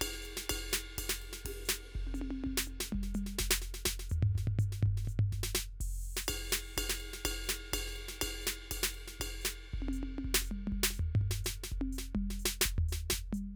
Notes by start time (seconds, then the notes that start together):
0.01 kick, ride bell
0.13 snare
0.22 hi-hat pedal, ride
0.37 snare
0.49 kick, ride bell
0.57 kick
0.69 snare, hi-hat pedal
0.98 kick, ride bell
1.09 snare
1.16 hi-hat pedal
1.22 ride
1.33 snare
1.45 kick, ride
1.65 snare, hi-hat pedal
1.95 kick
2.02 kick
2.07 high tom
2.14 hi-hat pedal, high tom
2.21 high tom
2.31 high tom
2.44 kick, high tom
2.52 kick
2.57 snare
2.64 hi-hat pedal, high tom
2.80 snare
2.92 kick, mid tom
3.01 kick, snare
3.14 hi-hat pedal, mid tom
3.26 snare
3.39 kick, snare
3.46 kick
3.51 snare
3.61 snare, hi-hat pedal
3.74 snare
3.85 kick, snare
3.93 kick
3.99 snare
4.09 floor tom, hi-hat pedal
4.22 floor tom
4.35 kick, snare
4.42 kick
4.47 floor tom
4.59 hi-hat pedal, floor tom
4.72 snare
4.83 kick, floor tom
4.97 snare
5.05 snare, hi-hat pedal, floor tom
5.19 floor tom
5.32 kick, snare
5.39 kick
5.43 snare
5.55 snare, hi-hat pedal
5.80 kick, crash
5.91 kick
6.02 hi-hat pedal
6.17 snare
6.28 kick, ride bell
6.36 kick
6.49 snare, hi-hat pedal
6.77 kick, ride bell
6.83 kick
6.89 snare
6.97 hi-hat pedal, ride
7.13 snare
7.25 kick, ride bell
7.31 kick
7.44 hi-hat pedal
7.49 snare
7.73 kick, ride bell
7.79 kick
7.87 snare
7.92 hi-hat pedal, ride
8.08 snare
8.21 kick, ride bell
8.41 hi-hat pedal
8.47 snare
8.71 kick, ride bell
8.77 kick
8.83 snare
8.90 hi-hat pedal
8.94 ride
9.08 snare
9.20 kick, ride bell
9.26 kick
9.41 snare, hi-hat pedal
9.73 kick
9.81 kick, high tom
9.88 high tom
9.93 hi-hat pedal
10.03 high tom
10.18 high tom
10.24 kick
10.31 kick, snare
10.42 snare, hi-hat pedal
10.51 mid tom
10.67 mid tom
10.72 kick
10.78 kick
10.83 snare
10.90 snare, hi-hat pedal
10.99 floor tom
11.15 floor tom
11.21 kick
11.28 kick, snare
11.44 snare, hi-hat pedal
11.64 snare
11.72 kick
11.78 kick, high tom
11.93 hi-hat pedal
11.98 snare
12.15 kick, mid tom
12.22 kick
12.30 snare
12.39 hi-hat pedal
12.45 snare
12.61 snare
12.65 kick
12.72 kick
12.78 floor tom
12.89 snare, hi-hat pedal
13.10 kick, snare
13.19 kick
13.33 hi-hat pedal, mid tom